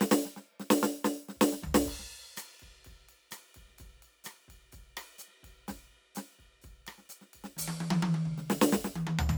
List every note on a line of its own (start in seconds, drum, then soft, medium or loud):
0.01 snare loud
0.11 snare loud
0.26 snare soft
0.37 snare soft
0.60 snare medium
0.70 snare loud
0.83 snare loud
1.05 snare medium
1.29 snare medium
1.36 kick soft
1.41 snare loud
1.53 snare soft
1.63 kick soft
1.63 floor tom medium
1.69 kick soft
1.75 snare loud
1.86 kick soft
1.86 crash medium
1.93 kick soft
1.99 snare soft
2.37 cross-stick medium
2.37 hi-hat pedal medium
2.37 ride medium
2.60 kick soft
2.60 ride soft
2.84 kick soft
2.84 hi-hat pedal soft
2.84 ride soft
2.91 kick soft
3.09 ride soft
3.31 cross-stick medium
3.31 hi-hat pedal medium
3.31 ride medium
3.55 kick soft
3.55 ride soft
3.68 snare soft
3.72 snare soft
3.78 kick soft
3.78 hi-hat pedal soft
3.78 ride soft
3.85 kick soft
4.02 ride soft
4.24 cross-stick medium
4.24 hi-hat pedal medium
4.24 ride medium
4.48 kick soft
4.48 ride soft
4.53 kick soft
4.72 kick soft
4.72 hi-hat pedal soft
4.72 ride soft
4.78 kick soft
4.97 cross-stick medium
4.97 ride loud
5.19 hi-hat pedal medium
5.19 ride soft
5.28 snare soft
5.43 kick soft
5.43 ride soft
5.48 kick soft
5.67 kick soft
5.67 snare medium
5.67 hi-hat pedal soft
5.67 ride medium
5.75 kick soft
6.15 snare medium
6.15 hi-hat pedal medium
6.15 ride medium
6.39 kick soft
6.39 ride soft
6.62 kick soft
6.62 hi-hat pedal soft
6.62 ride soft
6.87 cross-stick medium
6.87 ride medium
6.98 snare soft
7.09 hi-hat pedal medium
7.09 ride soft
7.21 snare soft
7.33 kick soft
7.33 ride medium
7.44 snare medium
7.57 kick soft
7.57 hi-hat pedal loud
7.57 high tom soft
7.68 high tom medium
7.81 high tom loud
7.91 high tom loud
8.03 high tom loud
8.14 high tom medium
8.25 kick soft
8.25 mid tom medium
8.38 snare soft
8.50 kick soft
8.50 snare loud
8.62 snare loud
8.73 kick soft
8.73 snare loud
8.80 kick soft
8.85 snare medium
8.94 kick soft
8.94 high tom loud
8.99 kick soft
9.07 high tom medium
9.19 floor tom loud
9.29 floor tom loud